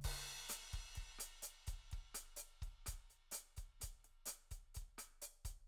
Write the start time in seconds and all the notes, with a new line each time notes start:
0.01 kick, hi-hat pedal, crash
0.49 closed hi-hat, cross-stick, snare, hi-hat pedal
0.73 kick, closed hi-hat
0.78 kick
0.95 kick, closed hi-hat
1.02 kick
1.19 closed hi-hat, cross-stick
1.42 closed hi-hat, hi-hat pedal
1.67 closed hi-hat, kick
1.73 kick
1.91 kick, closed hi-hat
1.98 kick
2.14 closed hi-hat, cross-stick
2.36 closed hi-hat, hi-hat pedal
2.62 kick, closed hi-hat
2.67 kick
2.86 closed hi-hat, kick, cross-stick
2.93 kick
3.10 closed hi-hat
3.31 closed hi-hat, cross-stick, hi-hat pedal
3.56 closed hi-hat, kick
3.80 closed hi-hat, kick, snare
4.04 closed hi-hat
4.26 closed hi-hat, cross-stick, snare, hi-hat pedal
4.51 closed hi-hat, kick
4.74 closed hi-hat, kick
4.82 kick
4.98 closed hi-hat, cross-stick
5.22 hi-hat pedal
5.45 closed hi-hat, kick
5.50 kick